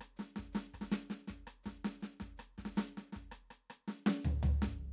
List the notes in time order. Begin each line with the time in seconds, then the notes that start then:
0.01 cross-stick
0.17 snare, hi-hat pedal
0.36 kick, snare
0.53 snare, hi-hat pedal
0.74 kick, cross-stick
0.81 snare
0.91 snare, hi-hat pedal
1.10 snare
1.28 kick, snare, hi-hat pedal
1.47 cross-stick
1.64 kick, snare, hi-hat pedal
1.85 snare
2.00 snare, hi-hat pedal
2.20 kick, snare
2.37 cross-stick, hi-hat pedal
2.58 kick, snare
2.65 snare
2.76 snare, hi-hat pedal
2.97 snare
3.13 kick, snare, hi-hat pedal
3.32 cross-stick
3.51 cross-stick, hi-hat pedal
3.70 cross-stick
3.88 snare
4.06 snare
4.25 floor tom
4.43 floor tom
4.61 kick, snare, hi-hat pedal